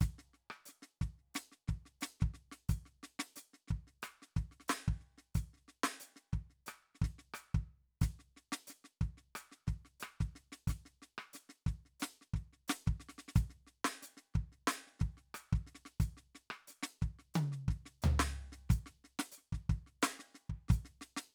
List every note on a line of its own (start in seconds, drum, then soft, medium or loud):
0.01 kick medium
0.01 snare soft
0.01 hi-hat pedal medium
0.19 snare soft
0.34 snare soft
0.50 cross-stick medium
0.66 snare soft
0.66 hi-hat pedal medium
0.83 snare soft
1.02 kick medium
1.02 snare soft
1.18 snare soft
1.35 snare medium
1.35 hi-hat pedal medium
1.52 snare soft
1.68 kick medium
1.68 snare soft
1.86 snare soft
2.01 snare medium
2.01 hi-hat pedal medium
2.20 kick medium
2.20 snare soft
2.34 snare soft
2.52 snare soft
2.69 kick medium
2.69 snare soft
2.69 hi-hat pedal medium
2.86 snare soft
3.03 snare soft
3.20 snare medium
3.36 snare soft
3.36 hi-hat pedal medium
3.54 snare soft
3.68 kick medium
3.68 snare soft
3.87 snare soft
4.03 cross-stick medium
4.03 hi-hat pedal medium
4.22 snare soft
4.37 kick medium
4.37 snare soft
4.52 snare soft
4.60 snare soft
4.68 snare medium
4.68 hi-hat pedal medium
4.88 kick medium
5.01 snare soft
5.18 snare soft
5.35 kick medium
5.35 snare soft
5.35 hi-hat pedal medium
5.54 snare soft
5.57 snare soft
5.68 snare soft
5.84 snare loud
6.00 snare soft
6.00 hi-hat pedal medium
6.16 snare soft
6.33 kick medium
6.33 snare soft
6.50 snare soft
6.67 cross-stick medium
6.67 hi-hat pedal medium
6.95 snare soft
7.02 kick medium
7.02 snare soft
7.19 snare soft
7.34 cross-stick medium
7.34 hi-hat pedal medium
7.55 kick medium
7.55 snare soft
8.01 kick medium
8.01 snare soft
8.01 hi-hat pedal medium
8.19 snare soft
8.37 snare soft
8.53 snare medium
8.68 snare soft
8.68 hi-hat pedal medium
8.85 snare soft
9.01 kick medium
9.01 snare soft
9.18 snare soft
9.36 cross-stick medium
9.36 hi-hat pedal medium
9.52 snare soft
9.67 kick medium
9.67 snare soft
9.85 snare soft
10.00 cross-stick medium
10.00 hi-hat pedal medium
10.21 kick medium
10.21 snare soft
10.36 snare soft
10.52 snare soft
10.68 kick medium
10.68 snare soft
10.68 hi-hat pedal medium
10.86 snare soft
11.02 snare soft
11.18 cross-stick medium
11.34 snare soft
11.34 hi-hat pedal medium
11.49 snare soft
11.67 kick medium
11.67 snare soft
11.86 snare soft
12.00 snare medium
12.00 hi-hat pedal medium
12.22 snare soft
12.34 kick medium
12.34 snare soft
12.53 snare soft
12.68 snare loud
12.68 hi-hat pedal medium
12.87 kick medium
12.87 snare soft
13.00 snare soft
13.09 snare soft
13.18 snare soft
13.28 snare soft
13.36 kick medium
13.36 snare soft
13.36 hi-hat pedal medium
13.50 snare soft
13.67 snare soft
13.85 snare medium
14.03 snare soft
14.03 hi-hat pedal medium
14.17 snare soft
14.34 kick medium
14.34 snare soft
14.52 snare soft
14.68 snare loud
14.68 hi-hat pedal medium
14.87 snare soft
15.00 kick medium
15.00 snare soft
15.18 snare soft
15.35 cross-stick medium
15.35 hi-hat pedal medium
15.53 kick medium
15.53 snare soft
15.67 snare soft
15.75 snare soft
15.86 snare soft
16.00 kick medium
16.00 snare soft
16.00 hi-hat pedal medium
16.17 snare soft
16.35 snare soft
16.51 cross-stick medium
16.68 snare soft
16.68 hi-hat pedal medium
16.83 snare medium
17.02 kick medium
17.02 snare soft
17.19 snare soft
17.34 hi-hat pedal medium
17.34 high tom loud
17.53 snare soft
17.68 kick medium
17.68 snare soft
17.86 snare soft
18.02 floor tom loud
18.02 hi-hat pedal medium
18.20 snare loud
18.37 snare soft
18.53 snare soft
18.70 kick medium
18.70 snare soft
18.70 hi-hat pedal medium
18.86 snare soft
19.04 snare soft
19.19 snare loud
19.32 hi-hat pedal medium
19.38 snare soft
19.53 kick soft
19.53 snare soft
19.70 kick medium
19.70 snare soft
19.87 snare soft
20.02 snare loud
20.02 hi-hat pedal medium
20.20 snare soft
20.35 snare soft
20.50 kick soft
20.69 kick medium
20.69 snare soft
20.69 hi-hat pedal medium
20.85 snare soft
21.01 snare soft
21.17 snare medium